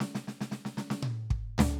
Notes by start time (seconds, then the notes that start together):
0.01 snare
0.15 snare
0.28 snare
0.41 snare
0.52 snare
0.66 snare
0.78 snare
0.91 snare
1.03 high tom
1.31 kick
1.59 snare, floor tom